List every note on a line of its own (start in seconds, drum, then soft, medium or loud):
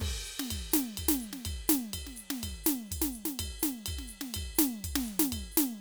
0.01 kick soft
0.01 crash medium
0.13 kick soft
0.24 hi-hat pedal medium
0.40 snare medium
0.51 kick soft
0.51 ride bell loud
0.72 snare loud
0.72 hi-hat pedal medium
0.98 kick soft
0.98 ride bell loud
1.09 snare loud
1.21 hi-hat pedal medium
1.21 ride soft
1.33 snare medium
1.45 kick soft
1.45 ride bell loud
1.53 kick soft
1.68 snare loud
1.68 hi-hat pedal medium
1.94 kick soft
1.94 ride bell loud
1.99 kick soft
2.07 snare soft
2.17 hi-hat pedal medium
2.17 ride medium
2.31 snare medium
2.43 kick soft
2.43 ride bell loud
2.49 kick soft
2.64 snare loud
2.64 hi-hat pedal medium
2.86 hi-hat pedal soft
2.92 kick soft
2.92 ride bell medium
2.98 kick soft
3.02 snare medium
3.13 hi-hat pedal medium
3.13 ride soft
3.26 snare medium
3.40 kick soft
3.40 ride bell loud
3.46 kick soft
3.60 snare medium
3.60 hi-hat pedal medium
3.86 kick soft
3.86 ride bell loud
3.94 kick soft
3.99 snare soft
4.08 hi-hat pedal medium
4.08 ride soft
4.21 snare medium
4.34 kick soft
4.34 ride bell loud
4.43 kick soft
4.55 snare loud
4.55 hi-hat pedal medium
4.84 kick soft
4.84 ride bell medium
4.96 snare loud
5.04 hi-hat pedal medium
5.09 ride soft
5.20 snare loud
5.32 kick soft
5.32 ride bell loud
5.38 kick soft
5.52 hi-hat pedal medium
5.58 snare loud
5.64 snare soft